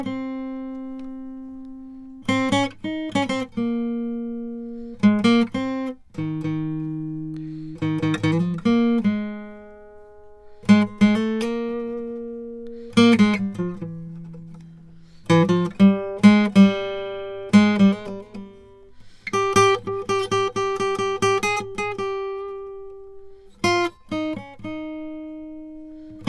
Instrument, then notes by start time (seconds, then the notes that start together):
acoustic guitar
0.01 C4
2.29 C4
2.54 C#4
2.85 D#4
3.16 C#4
3.31 C4
3.58 A#3
5.04 G#3
5.25 A#3
5.56 C4
6.20 D#3
6.46 D#3
7.83 D#3
8.04 D#3
8.24 D#3
8.34 F3
8.66 A#3
9.06 G#3
10.70 G#3
11.02 G#3
11.16 A3
11.43 A#3
12.98 A#3
13.20 G#3
13.35 G3
13.60 F3
13.83 E3
15.30 E3
15.50 F3
15.80 G3
16.24 G#3
16.56 G3
17.54 G#3
17.81 G3
17.93 G#3
18.07 G3
18.22 G#3
18.36 G3
19.34 G4
19.57 G4
19.88 G4
20.10 G4
20.33 G4
20.57 G4
20.81 G4
21.00 G4
21.23 G4
21.44 G#4
21.57 G4
21.79 G#4
22.00 G4
23.65 F4
24.13 D#4
24.38 C#4
24.66 D#4